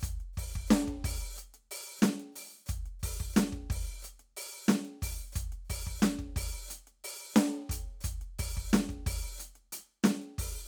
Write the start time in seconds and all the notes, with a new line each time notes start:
0.01 closed hi-hat, kick, hi-hat pedal
0.20 closed hi-hat
0.34 hi-hat pedal
0.38 open hi-hat, kick
0.56 kick
0.68 closed hi-hat, snare, hi-hat pedal
0.88 kick, closed hi-hat
1.05 open hi-hat, kick
1.36 closed hi-hat, hi-hat pedal
1.54 closed hi-hat
1.71 open hi-hat
1.99 snare, hi-hat pedal
2.03 closed hi-hat
2.20 closed hi-hat
2.33 open hi-hat, hi-hat pedal
2.66 closed hi-hat, kick, hi-hat pedal
2.86 closed hi-hat
3.00 open hi-hat, kick, hi-hat pedal
3.20 kick
3.33 closed hi-hat, snare, hi-hat pedal
3.53 kick, closed hi-hat
3.70 open hi-hat, kick
4.02 closed hi-hat, hi-hat pedal
4.20 closed hi-hat
4.37 open hi-hat
4.66 closed hi-hat, snare, hi-hat pedal
4.85 closed hi-hat
5.02 open hi-hat, kick, hi-hat pedal
5.33 closed hi-hat, kick, hi-hat pedal
5.52 closed hi-hat
5.65 hi-hat pedal
5.70 open hi-hat, kick
5.87 kick
6.00 closed hi-hat, snare, hi-hat pedal
6.19 kick, closed hi-hat
6.36 open hi-hat, kick
6.68 closed hi-hat, hi-hat pedal
6.87 closed hi-hat
7.04 open hi-hat
7.34 closed hi-hat, snare, hi-hat pedal
7.54 closed hi-hat
7.70 open hi-hat, kick
8.01 closed hi-hat, kick, hi-hat pedal
8.22 closed hi-hat
8.39 open hi-hat, kick
8.57 kick
8.70 closed hi-hat, snare, hi-hat pedal
8.89 kick, closed hi-hat
9.07 open hi-hat, kick
9.38 closed hi-hat, hi-hat pedal
9.56 closed hi-hat
9.73 open hi-hat
10.03 closed hi-hat, snare, hi-hat pedal
10.22 closed hi-hat
10.39 open hi-hat, kick